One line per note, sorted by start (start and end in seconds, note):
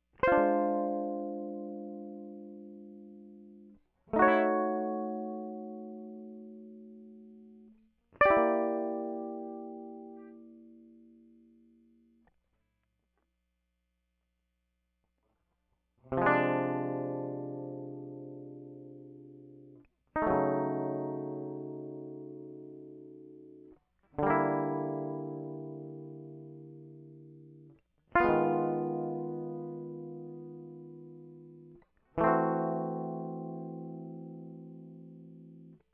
0.23 3.59 C5
0.28 3.73 F4
0.32 3.82 D4
0.38 3.79 G#3
4.14 7.77 A3
4.14 7.72 D#4
4.19 7.71 F#4
4.19 7.25 C#5
8.21 10.70 D5
8.26 11.64 G4
8.30 12.25 E4
8.37 12.32 A#3
16.13 19.84 C3
16.18 19.84 F3
16.22 19.80 G#3
16.26 19.87 D4
20.16 23.78 D#4
20.22 23.75 A3
20.27 23.79 F#3
20.31 23.79 C#3
24.19 27.75 D3
24.19 27.75 G3
24.27 27.71 A#3
24.27 27.78 E4
28.15 31.83 F4
28.21 31.79 B3
28.25 31.86 G#3
28.29 31.79 D#3
32.18 35.78 E3
32.18 35.79 A3
32.24 35.76 C4
32.24 35.79 F#4